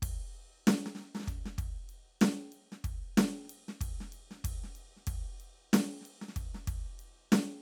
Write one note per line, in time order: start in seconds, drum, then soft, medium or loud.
0.02 kick medium
0.02 ride loud
0.67 snare loud
0.67 ride medium
0.86 snare soft
0.95 snare soft
0.95 ride soft
0.99 snare soft
1.01 snare soft
1.15 snare medium
1.20 snare soft
1.23 snare soft
1.26 kick medium
1.26 snare soft
1.26 ride soft
1.46 snare soft
1.58 kick medium
1.58 ride medium
1.89 ride soft
2.21 snare loud
2.21 ride medium
2.52 ride soft
2.72 snare soft
2.84 kick medium
2.84 ride medium
3.17 snare loud
3.17 ride medium
3.39 snare soft
3.45 snare soft
3.50 ride medium
3.68 snare soft
3.81 kick medium
3.81 ride medium
4.00 snare soft
4.03 snare soft
4.12 ride soft
4.31 snare soft
4.34 snare soft
4.44 kick medium
4.44 ride medium
4.64 snare soft
4.75 ride soft
4.97 snare soft
5.07 kick medium
5.07 ride medium
5.40 ride soft
5.56 ride soft
5.73 snare loud
5.73 ride loud
6.01 snare soft
6.05 ride soft
6.17 ride soft
6.22 snare soft
6.28 snare soft
6.32 snare soft
6.36 kick medium
6.36 ride medium
6.55 snare soft
6.67 kick medium
6.67 ride medium
6.99 ride soft
7.32 snare loud
7.32 ride medium